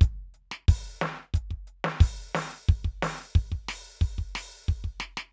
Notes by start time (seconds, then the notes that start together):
0.01 closed hi-hat, kick
0.34 closed hi-hat
0.51 snare
0.68 open hi-hat, kick
1.01 closed hi-hat, snare, hi-hat pedal
1.34 closed hi-hat, kick
1.51 kick
1.67 closed hi-hat
1.84 snare
2.00 open hi-hat, kick
2.35 open hi-hat, snare
2.69 kick
2.84 kick
2.89 crash
3.03 open hi-hat, snare
3.35 open hi-hat, kick
3.52 kick
3.56 crash
3.68 open hi-hat, snare
4.01 open hi-hat, kick
4.18 kick
4.24 ride
4.35 open hi-hat, snare
4.68 kick
4.84 kick
4.88 crash, ride
5.00 snare, hi-hat pedal
5.17 snare